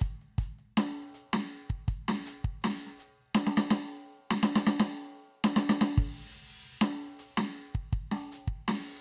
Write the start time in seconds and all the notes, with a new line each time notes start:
0.01 closed hi-hat, kick, hi-hat pedal
0.22 closed hi-hat
0.39 closed hi-hat, kick
0.59 closed hi-hat
0.78 closed hi-hat, snare
0.98 closed hi-hat
1.15 closed hi-hat
1.34 snare, closed hi-hat
1.52 closed hi-hat
1.70 kick, closed hi-hat
1.89 closed hi-hat, kick
2.09 snare, closed hi-hat
2.27 closed hi-hat
2.45 kick, closed hi-hat
2.62 open hi-hat, snare, hi-hat pedal
2.87 snare
3.00 hi-hat pedal
3.35 snare
3.48 snare
3.58 snare
3.71 snare
4.31 snare
4.44 snare
4.56 snare
4.67 snare
4.80 snare
5.45 snare
5.57 snare
5.70 snare
5.82 snare
5.98 kick, crash
6.36 crash
6.82 closed hi-hat, snare
7.02 closed hi-hat
7.20 closed hi-hat
7.38 snare, closed hi-hat
7.56 closed hi-hat
7.75 kick, closed hi-hat
7.93 closed hi-hat, kick
8.12 snare
8.33 closed hi-hat
8.48 kick
8.69 open hi-hat, snare